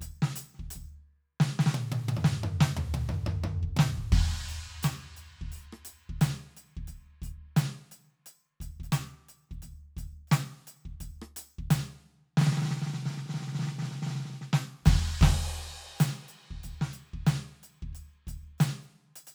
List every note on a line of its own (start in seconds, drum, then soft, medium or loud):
0.01 kick soft
0.01 percussion medium
0.22 snare loud
0.36 percussion loud
0.54 snare soft
0.59 kick soft
0.59 snare soft
0.69 snare soft
0.69 percussion loud
0.76 kick soft
1.40 snare loud
1.59 snare loud
1.66 snare loud
1.74 high tom loud
1.92 high tom loud
2.09 high tom loud
2.17 mid tom loud
2.25 snare loud
2.44 mid tom loud
2.61 snare loud
2.77 floor tom loud
2.94 high tom loud
3.09 mid tom loud
3.26 mid tom loud
3.44 mid tom loud
3.63 kick medium
3.77 snare loud
3.77 high tom loud
3.97 kick medium
4.12 kick loud
4.12 crash loud
4.49 percussion medium
4.83 snare medium
4.83 percussion loud
5.17 percussion medium
5.41 kick medium
5.52 percussion medium
5.73 cross-stick medium
5.85 percussion loud
6.09 kick medium
6.21 snare loud
6.21 percussion loud
6.52 cross-stick soft
6.57 percussion medium
6.77 kick soft
6.87 kick soft
6.87 percussion medium
7.22 kick soft
7.22 percussion medium
7.56 snare loud
7.56 percussion soft
7.56 percussion loud
7.68 snare soft
7.92 percussion medium
8.26 percussion medium
8.60 kick soft
8.60 percussion medium
8.80 kick soft
8.80 percussion soft
8.92 snare loud
8.92 percussion loud
9.29 percussion medium
9.49 kick soft
9.49 snare soft
9.49 percussion soft
9.62 kick soft
9.62 percussion medium
9.97 kick soft
9.97 percussion medium
10.01 snare soft
10.28 percussion soft
10.32 snare loud
10.32 percussion loud
10.67 percussion medium
10.85 kick soft
11.01 kick soft
11.01 percussion medium
11.22 cross-stick medium
11.36 percussion loud
11.59 kick medium
11.71 snare loud
11.71 percussion loud
12.37 snare loud
12.42 snare loud
12.47 snare loud
12.52 snare medium
12.57 snare medium
12.62 snare medium
12.65 snare medium
12.69 snare medium
12.71 snare medium
12.77 snare medium
12.82 snare medium
12.90 snare medium
12.94 snare medium
12.98 snare medium
13.03 snare soft
13.06 snare medium
13.11 snare medium
13.14 snare soft
13.18 snare medium
13.22 snare soft
13.26 snare soft
13.29 snare medium
13.34 snare medium
13.37 snare medium
13.41 snare soft
13.42 snare medium
13.48 snare medium
13.55 snare medium
13.59 snare medium
13.62 snare medium
13.66 snare soft
13.66 snare medium
13.72 snare soft
13.76 snare soft
13.79 snare medium
13.82 snare medium
13.85 snare medium
13.89 snare soft
13.91 snare medium
13.95 snare soft
13.99 snare soft
14.02 snare medium
14.07 snare medium
14.10 snare medium
14.16 snare medium
14.20 snare medium
14.30 snare soft
14.34 snare soft
14.41 snare soft
14.48 cross-stick soft
14.53 snare loud
14.82 kick soft
14.82 snare loud
14.82 percussion medium
14.86 kick loud
14.86 crash loud
15.17 kick soft
15.21 kick loud
15.21 snare loud
15.21 crash loud
15.99 snare loud
15.99 percussion soft
16.00 percussion loud
16.28 percussion medium
16.51 kick soft
16.64 kick soft
16.64 percussion medium
16.81 snare medium
16.93 percussion medium
17.14 kick soft
17.27 snare loud
17.27 percussion medium
17.63 percussion medium
17.78 kick soft
17.78 snare soft
17.93 kick soft
17.93 percussion medium
18.25 kick soft
18.25 snare soft
18.25 percussion soft
18.25 percussion medium
18.58 snare loud
18.58 percussion soft
18.61 percussion loud
18.83 percussion soft
19.16 percussion medium
19.27 percussion medium